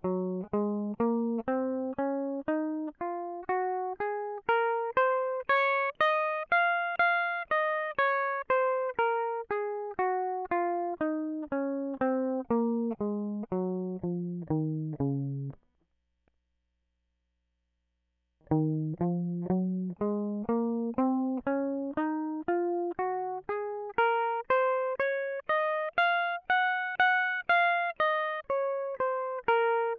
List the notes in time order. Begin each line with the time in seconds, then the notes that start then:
0.05 F#3
0.54 G#3
1.01 A#3
1.48 C4
1.99 C#4
2.49 D#4
3.01 F4
3.49 F#4
4.01 G#4
4.49 A#4
4.97 C5
5.50 C#5
6.01 D#5
6.52 F5
7.00 F5
7.52 D#5
7.99 C#5
8.50 C5
8.99 A#4
9.51 G#4
9.99 F#4
10.52 F4
11.01 D#4
11.53 C#4
12.02 C4
12.51 A#3
13.01 G#3
13.53 F#3
14.05 F3
14.52 D#3
15.02 C#3
18.52 D#3
19.02 F3
19.51 F#3
20.02 G#3
20.50 A#3
20.99 C4
21.47 C#4
21.98 D#4
22.49 F4
22.99 F#4
23.49 G#4
23.99 A#4
24.51 C5
25.00 C#5
25.50 D#5
25.98 F5
26.50 F#5
27.00 F#5
27.50 F5
28.00 D#5
28.50 C#5
29.00 C5
29.49 A#4